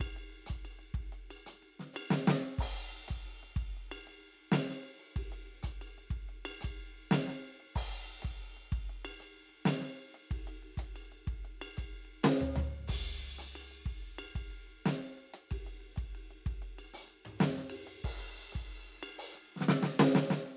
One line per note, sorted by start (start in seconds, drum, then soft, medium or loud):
0.01 kick medium
0.01 ride bell loud
0.17 closed hi-hat medium
0.31 ride soft
0.47 closed hi-hat loud
0.47 kick medium
0.66 ride bell medium
0.79 closed hi-hat soft
0.95 kick medium
0.95 ride soft
1.13 closed hi-hat medium
1.31 ride bell medium
1.47 closed hi-hat loud
1.63 ride soft
1.80 snare soft
1.94 hi-hat pedal loud
1.94 ride bell loud
2.11 snare loud
2.28 snare loud
2.45 closed hi-hat soft
2.59 kick medium
2.59 crash medium
2.76 closed hi-hat soft
2.92 ride soft
3.09 kick medium
3.09 closed hi-hat loud
3.26 ride soft
3.44 closed hi-hat soft
3.57 kick medium
3.77 closed hi-hat soft
3.92 ride bell loud
4.08 closed hi-hat medium
4.21 ride soft
4.35 ride soft
4.53 snare loud
4.53 ride bell loud
4.70 snare soft
4.84 ride medium
5.00 open hi-hat medium
5.13 hi-hat pedal soft
5.17 kick medium
5.17 ride medium
5.33 closed hi-hat medium
5.47 ride soft
5.63 closed hi-hat loud
5.63 kick medium
5.82 ride bell medium
5.99 closed hi-hat soft
6.11 kick medium
6.11 ride soft
6.30 closed hi-hat soft
6.46 ride bell loud
6.62 closed hi-hat loud
6.62 kick medium
6.76 ride soft
6.95 ride soft
7.12 snare loud
7.12 ride bell loud
7.28 snare soft
7.43 ride soft
7.61 closed hi-hat soft
7.76 kick medium
7.76 crash medium
7.92 closed hi-hat soft
8.06 ride soft
8.23 kick medium
8.23 closed hi-hat medium
8.40 ride bell soft
8.57 closed hi-hat soft
8.73 kick medium
8.73 ride soft
8.90 closed hi-hat soft
9.06 ride bell loud
9.20 closed hi-hat medium
9.35 ride soft
9.50 ride soft
9.66 snare loud
9.66 ride bell loud
9.82 snare soft
9.98 ride soft
10.15 closed hi-hat medium
10.32 kick medium
10.32 ride medium
10.48 closed hi-hat medium
10.63 ride soft
10.78 kick medium
10.78 closed hi-hat loud
10.97 ride bell medium
11.12 closed hi-hat soft
11.28 kick medium
11.28 ride soft
11.45 closed hi-hat soft
11.62 ride bell loud
11.78 closed hi-hat medium
11.78 kick soft
12.06 ride soft
12.24 snare loud
12.24 hi-hat pedal medium
12.24 ride bell medium
12.41 floor tom medium
12.57 floor tom loud
12.89 kick medium
12.89 ride loud
13.06 closed hi-hat soft
13.23 ride soft
13.39 closed hi-hat loud
13.56 ride bell loud
13.72 closed hi-hat soft
13.86 kick medium
13.86 ride soft
14.03 closed hi-hat soft
14.19 ride bell loud
14.36 kick medium
14.36 closed hi-hat medium
14.52 ride soft
14.68 ride soft
14.86 snare loud
14.86 ride bell loud
15.18 ride soft
15.34 closed hi-hat loud
15.52 kick medium
15.52 ride medium
15.67 closed hi-hat medium
15.81 ride soft
15.97 kick medium
15.97 closed hi-hat medium
16.16 ride medium
16.31 closed hi-hat soft
16.47 kick medium
16.47 ride medium
16.63 closed hi-hat soft
16.79 ride bell medium
16.94 open hi-hat loud
17.09 ride soft
17.26 cross-stick soft
17.26 high tom soft
17.26 ride medium
17.26 floor tom soft
17.39 snare loud
17.39 hi-hat pedal medium
17.58 snare soft
17.71 ride loud
17.88 closed hi-hat medium
18.05 kick medium
18.05 crash medium
18.20 closed hi-hat medium
18.36 ride bell soft
18.53 closed hi-hat medium
18.53 kick medium
18.70 ride soft
18.87 closed hi-hat soft
19.03 ride bell loud
19.19 open hi-hat loud
19.35 hi-hat pedal medium
19.35 ride medium
19.57 snare soft
19.62 snare medium
19.69 snare loud
19.83 snare medium
19.98 snare loud
19.98 hi-hat pedal medium
20.16 snare loud
20.31 snare medium
20.47 open hi-hat medium